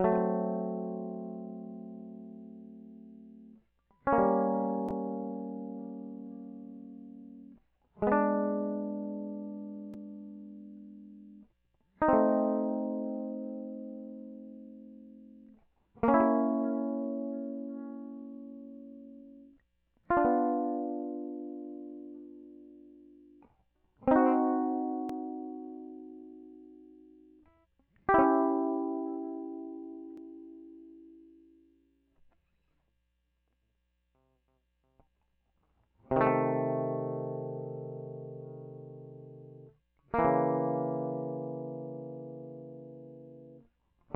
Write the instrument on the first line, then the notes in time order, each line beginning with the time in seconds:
electric guitar
0.00 F#3 A3
0.12 C4
4.08 C#4
4.13 A#3
4.19 G3
8.03 G#3
8.07 B3
8.12 D4
12.02 D#4
12.09 C4
12.14 A3
16.04 A#3
16.08 C#4
16.14 E4
16.21 G4
20.11 F4
20.17 D4
20.25 B3
24.08 C4 D#4
24.16 F#4
28.09 G4
28.14 E4
28.19 C#4
36.12 C3
36.17 D#3
36.21 A3
36.27 B3
40.14 A#3
40.19 E3
40.26 C#3